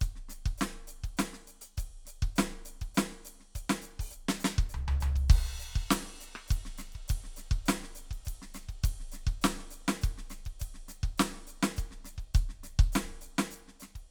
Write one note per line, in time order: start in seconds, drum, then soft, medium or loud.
0.01 kick medium
0.01 hi-hat pedal medium
0.01 ride bell soft
0.16 snare soft
0.29 snare soft
0.29 hi-hat pedal medium
0.29 ride soft
0.46 kick medium
0.46 ride soft
0.58 snare loud
0.58 hi-hat pedal medium
0.62 ride bell soft
0.75 snare soft
0.87 hi-hat pedal medium
0.87 ride soft
1.04 kick medium
1.04 ride soft
1.17 snare loud
1.17 hi-hat pedal medium
1.17 ride bell medium
1.34 snare soft
1.47 hi-hat pedal medium
1.47 ride soft
1.62 closed hi-hat medium
1.78 kick medium
1.78 hi-hat pedal medium
1.78 ride medium
2.05 snare soft
2.05 hi-hat pedal medium
2.05 ride soft
2.22 kick medium
2.22 ride soft
2.36 snare loud
2.36 hi-hat pedal medium
2.36 ride bell soft
2.52 snare soft
2.65 hi-hat pedal medium
2.65 ride soft
2.82 kick medium
2.82 ride soft
2.95 snare loud
2.95 hi-hat pedal medium
2.95 ride bell medium
3.11 snare soft
3.25 hi-hat pedal medium
3.25 ride medium
3.40 snare soft
3.55 kick soft
3.55 hi-hat pedal medium
3.55 ride soft
3.70 snare loud
3.82 hi-hat pedal medium
3.82 ride soft
4.00 open hi-hat medium
4.00 kick medium
4.11 hi-hat pedal medium
4.11 ride soft
4.29 snare loud
4.40 hi-hat pedal medium
4.45 snare loud
4.58 kick loud
4.69 hi-hat pedal medium
4.75 floor tom loud
4.88 floor tom loud
5.01 floor tom loud
5.01 hi-hat pedal medium
5.16 kick soft
5.16 ride soft
5.29 kick loud
5.29 hi-hat pedal soft
5.29 crash medium
5.60 hi-hat pedal medium
5.60 ride soft
5.76 kick medium
5.90 snare loud
5.90 hi-hat pedal medium
5.90 ride loud
6.01 snare soft
6.05 snare soft
6.21 hi-hat pedal medium
6.21 ride soft
6.36 cross-stick medium
6.48 kick medium
6.48 hi-hat pedal medium
6.52 ride medium
6.65 snare soft
6.78 snare soft
6.78 hi-hat pedal medium
6.78 ride soft
6.93 kick soft
6.93 ride soft
7.08 kick medium
7.08 hi-hat pedal medium
7.08 ride medium
7.24 snare soft
7.37 snare soft
7.37 hi-hat pedal medium
7.37 ride soft
7.51 kick medium
7.51 ride soft
7.66 snare loud
7.66 hi-hat pedal medium
7.66 ride medium
7.83 snare soft
7.95 hi-hat pedal medium
7.95 ride soft
8.11 kick medium
8.11 ride soft
8.25 kick medium
8.25 hi-hat pedal medium
8.25 ride medium
8.42 snare soft
8.54 snare soft
8.54 hi-hat pedal medium
8.54 ride soft
8.69 kick soft
8.69 ride soft
8.84 kick medium
8.84 hi-hat pedal medium
8.84 ride medium
9.00 snare soft
9.12 snare soft
9.12 hi-hat pedal medium
9.12 ride soft
9.27 kick medium
9.27 ride soft
9.42 snare loud
9.42 hi-hat pedal medium
9.42 ride medium
9.59 snare soft
9.71 hi-hat pedal medium
9.71 ride soft
9.88 snare loud
10.02 kick medium
10.02 hi-hat pedal medium
10.02 ride medium
10.18 snare soft
10.30 snare soft
10.30 hi-hat pedal medium
10.30 ride soft
10.46 kick soft
10.46 ride soft
10.60 kick medium
10.60 hi-hat pedal medium
10.60 ride medium
10.74 snare soft
10.88 snare soft
10.88 hi-hat pedal medium
10.88 ride soft
11.03 kick medium
11.03 ride soft
11.18 snare loud
11.18 hi-hat pedal medium
11.18 ride medium
11.33 snare soft
11.36 snare soft
11.47 hi-hat pedal medium
11.63 snare loud
11.77 kick medium
11.77 hi-hat pedal medium
11.77 ride soft
11.91 snare soft
12.05 snare soft
12.05 hi-hat pedal medium
12.05 ride soft
12.18 kick soft
12.18 ride soft
12.34 kick loud
12.34 hi-hat pedal medium
12.34 ride soft
12.49 snare soft
12.63 snare soft
12.63 hi-hat pedal medium
12.63 ride soft
12.79 kick loud
12.79 ride soft
12.93 snare loud
12.93 hi-hat pedal medium
12.93 ride medium
13.21 hi-hat pedal medium
13.27 ride soft
13.39 snare loud
13.51 hi-hat pedal medium
13.56 ride soft
13.68 snare soft
13.80 snare soft
13.80 hi-hat pedal medium
13.80 ride soft
13.95 kick soft
13.95 ride soft